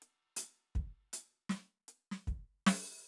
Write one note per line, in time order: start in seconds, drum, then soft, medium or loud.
0.01 closed hi-hat soft
0.37 closed hi-hat loud
0.75 kick medium
0.75 closed hi-hat soft
1.13 closed hi-hat loud
1.49 snare medium
1.49 closed hi-hat medium
1.88 closed hi-hat medium
2.11 snare medium
2.27 kick medium
2.27 closed hi-hat soft
2.67 open hi-hat loud
2.67 snare loud